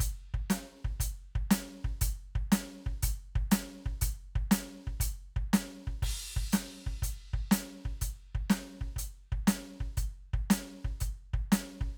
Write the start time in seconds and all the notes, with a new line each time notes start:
0.01 closed hi-hat, kick
0.34 kick
0.51 closed hi-hat, snare
0.85 kick
1.01 closed hi-hat, kick
1.36 kick
1.51 closed hi-hat, snare
1.85 kick
2.02 closed hi-hat, kick
2.36 kick
2.52 closed hi-hat, snare
2.87 kick
3.03 closed hi-hat, kick
3.36 kick
3.52 closed hi-hat, snare
3.86 kick
4.02 closed hi-hat, kick
4.36 kick
4.52 closed hi-hat, snare
4.88 kick
5.01 closed hi-hat, kick
5.37 kick
5.54 closed hi-hat, snare
5.88 kick
6.03 kick, crash
6.37 kick
6.53 closed hi-hat, snare
6.87 kick
7.03 closed hi-hat, kick
7.34 kick
7.52 closed hi-hat, snare
7.86 kick
8.02 closed hi-hat, kick
8.35 kick
8.51 closed hi-hat, snare
8.82 kick
8.97 closed hi-hat, kick
9.33 kick
9.48 closed hi-hat, snare
9.81 kick
9.98 closed hi-hat, kick
10.34 kick
10.51 closed hi-hat, snare
10.85 kick
11.01 closed hi-hat, kick
11.34 kick
11.53 closed hi-hat, snare
11.82 kick